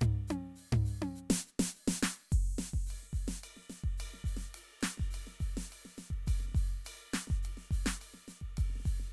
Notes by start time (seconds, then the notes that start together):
0.01 floor tom, hi-hat pedal
0.28 hi-hat pedal, high tom
0.32 closed hi-hat
0.56 hi-hat pedal
0.73 floor tom
0.86 hi-hat pedal
1.02 high tom
1.16 hi-hat pedal
1.30 snare
1.46 hi-hat pedal
1.60 snare
1.74 hi-hat pedal
1.88 snare
2.03 snare, hi-hat pedal
2.31 kick, hi-hat pedal, crash
2.58 snare, hi-hat pedal
2.74 kick, snare
2.87 hi-hat pedal
2.91 ride bell
3.03 snare
3.13 kick, hi-hat pedal, ride
3.28 snare, ride
3.43 hi-hat pedal, ride bell
3.57 snare
3.70 snare, hi-hat pedal, ride
3.84 kick, ride
3.98 hi-hat pedal, ride bell
4.14 snare
4.25 kick, hi-hat pedal, ride
4.37 snare, ride
4.55 hi-hat pedal, ride
4.81 snare, hi-hat pedal, ride
4.98 kick, snare
5.11 hi-hat pedal, ride bell
5.27 snare
5.40 kick, hi-hat pedal, ride
5.56 snare, ride
5.70 hi-hat pedal, ride bell
5.85 snare
5.97 snare, hi-hat pedal, ride
6.11 kick, ride
6.27 kick, hi-hat pedal, ride bell
6.40 snare
6.45 snare
6.49 snare
6.52 kick, snare, hi-hat pedal
6.57 ride
6.70 ride
6.85 hi-hat pedal, ride bell
7.13 snare, hi-hat pedal, ride
7.28 kick, snare
7.43 hi-hat pedal, ride
7.57 snare
7.71 kick, hi-hat pedal, ride
7.85 snare, ride
8.01 hi-hat pedal, ride bell
8.14 snare
8.28 snare, hi-hat pedal, ride
8.41 kick, ride
8.57 kick, hi-hat pedal, ride
8.70 snare
8.76 snare
8.80 snare
8.85 kick, hi-hat pedal, ride
9.00 snare